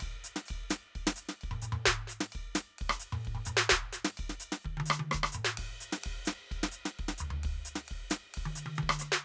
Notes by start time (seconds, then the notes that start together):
0.01 kick, ride bell
0.25 hi-hat pedal, ride
0.36 snare
0.46 hi-hat pedal, ride bell
0.51 kick
0.71 snare, hi-hat pedal
0.96 kick, ride bell
1.07 snare
1.16 hi-hat pedal, ride
1.29 snare
1.42 kick, ride bell
1.52 mid tom
1.62 hi-hat pedal, mid tom
1.73 mid tom
1.86 kick, snare
1.95 kick
2.08 snare, hi-hat pedal
2.21 snare
2.31 hi-hat pedal, ride bell
2.36 kick
2.56 snare, hi-hat pedal
2.79 kick, ride
2.90 kick, cross-stick
3.00 hi-hat pedal, ride
3.13 mid tom
3.21 hi-hat pedal
3.25 kick, ride
3.35 mid tom
3.46 hi-hat pedal, mid tom
3.57 snare
3.70 kick, snare
3.93 snare, hi-hat pedal
4.05 snare
4.15 hi-hat pedal, ride bell
4.20 kick
4.30 snare
4.40 hi-hat pedal, ride bell
4.53 snare
4.62 hi-hat pedal, high tom
4.66 kick
4.74 kick
4.78 high tom
4.80 high tom
4.86 hi-hat pedal
4.91 cross-stick
5.00 high tom
5.12 kick, cross-stick
5.21 kick, cross-stick
5.33 hi-hat pedal, mid tom
5.45 snare
5.58 kick, ride
5.81 hi-hat pedal, ride
5.93 snare
6.02 hi-hat pedal, ride
6.07 kick
6.26 snare, hi-hat pedal
6.52 kick, ride bell
6.64 snare
6.72 hi-hat pedal, ride
6.86 snare
6.99 kick, ride
7.09 snare
7.18 floor tom, hi-hat pedal
7.31 floor tom
7.44 kick, ride
7.54 kick
7.66 hi-hat pedal, ride
7.76 snare
7.86 hi-hat pedal, ride
7.92 kick
8.11 snare, hi-hat pedal
8.31 hi-hat pedal, ride
8.38 kick
8.46 kick, high tom
8.56 hi-hat pedal, high tom
8.66 high tom
8.76 hi-hat pedal, high tom, crash
8.83 kick
8.90 cross-stick
9.00 cross-stick, hi-hat pedal
9.12 snare